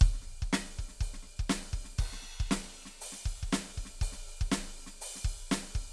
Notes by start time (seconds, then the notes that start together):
0.01 open hi-hat, kick
0.14 snare
0.22 snare
0.28 snare
0.42 kick
0.53 open hi-hat, snare
0.76 open hi-hat, kick
0.88 snare
0.93 snare
1.01 open hi-hat, kick
1.13 snare
1.23 open hi-hat, snare
1.39 kick
1.50 open hi-hat, snare
1.73 kick, open hi-hat
1.84 snare
1.92 snare
1.98 kick, crash
2.13 snare
2.22 snare, open hi-hat
2.40 kick
2.51 open hi-hat, snare
2.75 open hi-hat
2.85 snare
3.01 open hi-hat
3.12 snare
3.25 open hi-hat, kick
3.43 kick
3.52 open hi-hat, snare
3.75 kick, open hi-hat
3.85 snare
4.01 open hi-hat, kick
4.12 snare
4.26 open hi-hat, snare
4.41 kick
4.52 open hi-hat, snare
4.76 open hi-hat
4.86 snare
5.01 open hi-hat
5.16 snare
5.25 open hi-hat, kick
5.51 open hi-hat, snare
5.75 open hi-hat, kick